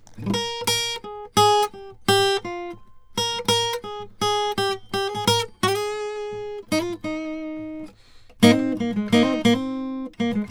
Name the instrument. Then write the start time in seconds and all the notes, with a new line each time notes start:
acoustic guitar
0.28 G3
0.35 A#4
0.68 A#4
1.05 G#4
1.38 G#4
1.64 G4
2.09 G4
2.46 F4
3.18 A#4
3.49 A#4
3.85 G#4
4.22 G#4
4.59 G4
4.94 G4
5.08 G#4
5.28 A#4
5.64 G4
5.75 G#4
6.73 F4
7.05 D#4
8.43 A#3 D#4
8.53 C4
8.81 A#3
8.98 G#3
9.13 A#3 D#4
9.24 C4
9.43 A#3 D#4
9.55 C4
10.21 A#3
10.33 G#3